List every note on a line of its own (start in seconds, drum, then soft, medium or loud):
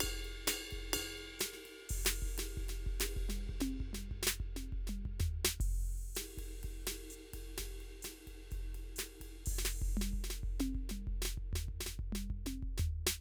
0.01 kick soft
0.01 hi-hat pedal soft
0.01 ride bell loud
0.10 kick soft
0.25 ride soft
0.48 snare medium
0.48 hi-hat pedal medium
0.48 ride bell loud
0.71 kick soft
0.71 ride soft
0.78 kick soft
0.94 kick soft
0.94 hi-hat pedal soft
0.94 ride bell loud
1.02 kick soft
1.18 ride soft
1.40 snare loud
1.40 hi-hat pedal medium
1.40 ride medium
1.54 snare soft
1.66 ride soft
1.75 snare soft
1.79 snare soft
1.90 kick soft
1.90 hi-hat pedal loud
1.98 kick soft
2.06 snare loud
2.06 ride medium
2.23 kick soft
2.28 kick soft
2.38 snare medium
2.38 ride medium
2.58 kick soft
2.69 snare soft
2.69 ride soft
2.87 kick soft
3.00 snare medium
3.00 ride medium
3.17 kick soft
3.30 snare medium
3.30 mid tom medium
3.50 kick soft
3.61 snare medium
3.61 high tom loud
3.81 kick soft
3.94 snare medium
3.94 mid tom medium
4.12 kick soft
4.17 kick soft
4.23 snare medium
4.27 snare loud
4.41 kick soft
4.57 snare soft
4.57 high tom medium
4.73 kick soft
4.88 snare soft
4.88 mid tom medium
5.06 kick soft
5.20 snare medium
5.20 floor tom medium
5.45 snare loud
5.61 kick medium
5.61 crash medium
6.16 snare medium
6.16 hi-hat pedal loud
6.16 ride medium
6.38 kick soft
6.38 ride medium
6.52 snare soft
6.57 snare soft
6.61 kick soft
6.61 snare soft
6.61 ride soft
6.87 snare medium
6.87 ride medium
7.11 snare soft
7.11 hi-hat pedal medium
7.19 snare soft
7.22 snare soft
7.34 kick soft
7.34 ride medium
7.57 kick soft
7.57 snare medium
7.57 hi-hat pedal soft
7.57 ride medium
7.64 kick soft
7.81 ride soft
8.03 snare medium
8.03 hi-hat pedal medium
8.03 ride medium
8.28 kick soft
8.28 ride soft
8.43 snare soft
8.48 snare soft
8.51 kick soft
8.51 snare soft
8.51 hi-hat pedal soft
8.51 ride soft
8.75 ride soft
8.97 snare medium
8.97 hi-hat pedal medium
8.97 ride medium
9.21 kick soft
9.21 ride medium
9.46 kick soft
9.46 hi-hat pedal loud
9.54 kick soft
9.59 snare medium
9.65 snare medium
9.82 kick soft
9.89 kick soft
9.97 mid tom medium
10.02 snare medium
10.14 kick soft
10.24 snare medium
10.31 snare medium
10.44 kick soft
10.60 snare medium
10.60 high tom loud
10.75 kick soft
10.90 snare soft
10.90 mid tom medium
11.08 kick soft
11.22 snare medium
11.26 snare medium
11.38 kick soft
11.53 snare medium
11.53 floor tom medium
11.69 kick soft
11.81 snare medium
11.87 snare medium
12.00 kick soft
12.13 snare medium
12.13 mid tom medium
12.31 kick soft
12.47 snare medium
12.47 high tom medium
12.63 kick soft
12.69 kick soft
12.78 snare medium
12.78 floor tom medium
13.07 snare loud